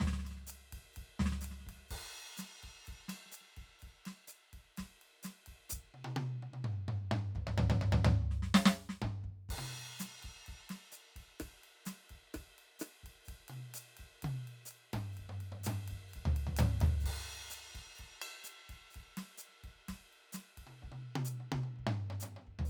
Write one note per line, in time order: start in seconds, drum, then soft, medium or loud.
0.01 kick soft
0.01 snare medium
0.01 floor tom loud
0.01 hi-hat pedal soft
0.08 snare medium
0.14 snare medium
0.19 snare soft
0.25 snare soft
0.25 ride bell soft
0.31 snare soft
0.37 snare soft
0.42 snare soft
0.47 snare soft
0.47 hi-hat pedal medium
0.47 ride medium
0.51 snare soft
0.61 snare soft
0.73 kick soft
0.73 ride medium
0.78 kick soft
0.94 kick soft
0.94 hi-hat pedal soft
0.94 ride medium
1.03 kick soft
1.20 snare medium
1.20 floor tom loud
1.26 snare medium
1.33 snare medium
1.42 snare soft
1.42 hi-hat pedal medium
1.42 ride medium
1.52 snare soft
1.61 snare soft
1.67 kick soft
1.67 snare soft
1.67 ride medium
1.73 kick soft
1.73 snare soft
1.82 snare soft
1.86 snare soft
1.86 hi-hat pedal soft
1.90 kick soft
1.90 snare soft
1.90 crash medium
1.97 kick soft
2.38 snare soft
2.38 hi-hat pedal medium
2.38 ride medium
2.64 kick soft
2.64 ride soft
2.69 kick soft
2.86 kick soft
2.86 hi-hat pedal soft
2.86 ride medium
2.94 kick soft
3.09 snare medium
3.09 ride bell medium
3.26 snare soft
3.32 hi-hat pedal medium
3.32 ride medium
3.42 snare soft
3.57 kick soft
3.57 ride soft
3.63 kick soft
3.80 kick soft
3.80 hi-hat pedal soft
3.80 ride soft
3.88 kick soft
4.06 snare medium
4.06 ride bell medium
4.28 hi-hat pedal medium
4.28 ride soft
4.54 kick soft
4.54 ride soft
4.59 kick soft
4.77 kick soft
4.77 snare medium
4.77 hi-hat pedal soft
4.77 ride medium
4.85 kick soft
5.02 ride soft
5.24 snare medium
5.24 hi-hat pedal medium
5.24 ride medium
5.47 kick soft
5.47 ride medium
5.70 kick soft
5.70 hi-hat pedal loud
5.95 high tom soft
6.05 high tom medium
6.17 high tom loud
6.43 high tom soft
6.54 high tom medium
6.65 mid tom loud
6.89 mid tom loud
7.12 mid tom loud
7.36 kick soft
7.36 floor tom medium
7.42 kick soft
7.48 floor tom medium
7.58 floor tom loud
7.71 floor tom loud
7.82 floor tom medium
7.93 floor tom loud
8.05 floor tom loud
8.31 snare soft
8.43 snare medium
8.55 snare loud
8.66 snare loud
8.90 snare medium
9.02 kick soft
9.02 mid tom loud
9.24 kick soft
9.30 kick soft
9.50 kick soft
9.50 crash medium
9.56 kick soft
9.56 high tom medium
10.00 snare medium
10.00 hi-hat pedal medium
10.00 ride medium
10.23 kick soft
10.23 ride soft
10.30 kick soft
10.47 kick soft
10.47 ride soft
10.70 snare medium
10.70 ride medium
10.93 hi-hat pedal medium
10.93 ride soft
11.16 kick soft
11.16 ride medium
11.21 kick soft
11.40 kick soft
11.40 cross-stick medium
11.40 hi-hat pedal soft
11.40 ride medium
11.47 kick soft
11.64 ride soft
11.86 snare medium
11.86 hi-hat pedal medium
11.86 ride medium
12.10 kick soft
12.10 ride soft
12.34 kick soft
12.34 cross-stick medium
12.34 hi-hat pedal soft
12.34 ride medium
12.59 ride soft
12.80 cross-stick medium
12.80 hi-hat pedal medium
12.80 ride medium
13.04 kick soft
13.04 ride medium
13.09 kick soft
13.25 kick soft
13.25 hi-hat pedal soft
13.25 ride medium
13.34 kick soft
13.49 high tom medium
13.49 ride medium
13.75 hi-hat pedal medium
13.75 ride medium
13.98 kick soft
13.98 ride medium
14.23 kick soft
14.23 high tom medium
14.23 ride medium
14.29 kick soft
14.48 ride soft
14.66 hi-hat pedal medium
14.72 ride medium
14.94 kick soft
14.94 mid tom medium
14.94 ride medium
14.99 kick soft
15.13 hi-hat pedal soft
15.18 kick soft
15.18 ride soft
15.25 kick soft
15.30 mid tom medium
15.41 ride soft
15.53 mid tom medium
15.64 hi-hat pedal medium
15.64 mid tom loud
15.64 ride medium
15.88 kick soft
15.88 ride medium
15.97 kick soft
16.09 hi-hat pedal soft
16.14 kick soft
16.14 ride medium
16.22 kick soft
16.26 floor tom loud
16.37 ride medium
16.48 floor tom medium
16.57 hi-hat pedal medium
16.57 ride loud
16.57 floor tom loud
16.81 kick soft
16.81 floor tom loud
16.81 ride medium
17.01 kick soft
17.01 hi-hat pedal soft
17.06 crash medium
17.51 hi-hat pedal medium
17.51 ride medium
17.75 kick soft
17.75 ride soft
17.81 kick soft
17.96 hi-hat pedal soft
17.96 ride soft
18.00 kick soft
18.05 kick soft
18.22 ride bell loud
18.45 hi-hat pedal medium
18.45 ride soft
18.70 kick soft
18.70 ride medium
18.75 kick soft
18.91 hi-hat pedal soft
18.95 kick soft
18.95 ride medium
19.01 kick soft
19.18 snare medium
19.18 ride medium
19.38 hi-hat pedal medium
19.43 ride soft
19.49 snare soft
19.64 kick soft
19.64 ride soft
19.69 kick soft
19.89 kick soft
19.89 snare medium
19.89 ride medium
19.94 kick soft
20.13 ride soft
20.33 snare soft
20.33 hi-hat pedal medium
20.33 ride medium
20.58 kick soft
20.58 ride medium
20.68 high tom soft
20.83 kick soft
20.83 high tom soft
20.89 kick soft
20.89 high tom medium
21.07 high tom soft
21.16 high tom loud
21.25 hi-hat pedal medium
21.41 high tom soft
21.53 kick soft
21.53 high tom loud
21.64 high tom soft
21.77 kick soft
21.77 mid tom soft
21.84 kick soft
21.84 mid tom loud
22.00 mid tom soft
22.11 mid tom medium
22.21 hi-hat pedal medium
22.21 mid tom medium
22.37 mid tom soft
22.47 kick soft
22.60 floor tom medium
22.66 hi-hat pedal soft